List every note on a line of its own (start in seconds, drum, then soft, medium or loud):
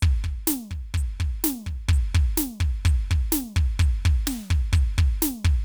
0.00 kick loud
0.00 hi-hat pedal soft
0.19 snare soft
0.24 kick medium
0.48 closed hi-hat loud
0.48 snare loud
0.71 kick medium
0.94 closed hi-hat medium
0.94 kick medium
1.20 kick medium
1.44 closed hi-hat medium
1.44 snare loud
1.53 snare soft
1.62 snare soft
1.67 kick medium
1.89 kick loud
1.93 closed hi-hat medium
2.15 kick loud
2.38 closed hi-hat medium
2.38 snare loud
2.61 kick loud
2.85 closed hi-hat medium
2.85 kick loud
3.11 kick loud
3.33 closed hi-hat medium
3.33 snare loud
3.40 snare soft
3.57 kick loud
3.80 closed hi-hat medium
3.80 kick loud
4.03 kick loud
4.03 snare soft
4.27 closed hi-hat loud
4.27 snare loud
4.51 kick loud
4.73 closed hi-hat medium
4.73 kick loud
4.95 kick loud
4.95 snare soft
5.22 closed hi-hat loud
5.22 snare loud
5.45 kick loud